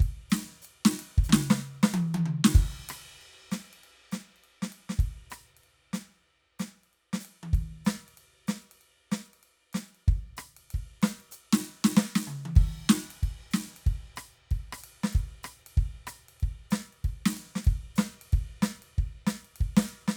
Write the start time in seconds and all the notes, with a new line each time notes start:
0.01 kick, ride
0.31 snare, hi-hat pedal, ride
0.63 hi-hat pedal, ride
0.86 snare, hi-hat pedal
1.00 ride
1.19 kick
1.25 hi-hat pedal
1.31 snare, mid tom
1.51 snare
1.59 snare
1.84 snare
1.95 high tom
2.16 high tom
2.27 mid tom
2.46 snare
2.56 kick, crash
2.90 cross-stick, ride
3.23 ride
3.53 snare, hi-hat pedal, ride
3.74 ride
3.85 ride
4.13 snare, hi-hat pedal
4.37 ride
4.45 ride
4.63 snare
4.73 ride
4.91 snare
5.00 kick, ride
5.31 cross-stick, hi-hat pedal
5.58 ride
5.65 ride
5.94 snare, hi-hat pedal, ride
6.60 snare, hi-hat pedal, ride
6.85 ride
6.94 ride
7.14 snare
7.21 hi-hat pedal
7.26 ride
7.44 high tom
7.54 kick, ride
7.86 snare, hi-hat pedal, ride
8.09 ride
8.19 ride
8.49 snare, hi-hat pedal, ride
8.73 ride
8.82 ride
9.13 snare, hi-hat pedal, ride
9.35 ride
9.44 ride
9.74 snare, hi-hat pedal, ride
9.96 ride
10.09 kick
10.38 cross-stick, hi-hat pedal
10.58 ride
10.72 kick, ride
11.03 snare, ride
11.08 hi-hat pedal
11.21 ride
11.33 hi-hat pedal, ride
11.54 snare
11.59 hi-hat pedal
11.66 ride
11.85 snare
11.91 hi-hat pedal
11.98 snare
12.17 snare
12.22 hi-hat pedal
12.29 mid tom
12.47 high tom
12.57 kick, crash
12.81 kick
12.90 snare, ride
13.12 ride
13.24 kick, ride
13.52 snare, hi-hat pedal, ride
13.78 ride
13.88 kick, ride
14.17 cross-stick, hi-hat pedal
14.52 kick, ride
14.67 kick
14.74 cross-stick
14.79 hi-hat pedal
14.85 ride
15.05 snare
15.14 kick, ride
15.44 cross-stick, hi-hat pedal
15.68 ride
15.78 kick
16.08 cross-stick, hi-hat pedal, ride
16.30 ride
16.41 kick, ride
16.72 snare, hi-hat pedal, ride
16.94 ride
17.05 kick, ride
17.27 snare, hi-hat pedal
17.38 ride
17.57 snare
17.66 kick, ride
17.97 snare, hi-hat pedal, ride
18.23 ride
18.34 kick, ride
18.64 snare, hi-hat pedal, ride
18.83 ride
18.99 kick
19.28 snare, hi-hat pedal, ride
19.46 ride
19.57 ride
19.62 kick
19.78 snare
19.83 hi-hat pedal
19.90 ride
20.09 snare